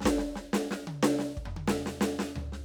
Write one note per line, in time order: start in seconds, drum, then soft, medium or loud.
0.01 kick soft
0.01 snare medium
0.06 snare loud
0.19 snare medium
0.36 snare medium
0.54 snare loud
0.71 snare medium
0.88 high tom medium
1.03 snare loud
1.19 snare medium
1.37 kick soft
1.46 kick soft
1.46 mid tom medium
1.57 high tom medium
1.68 snare loud
1.86 snare medium
2.01 snare loud
2.19 snare loud
2.36 floor tom medium
2.53 snare medium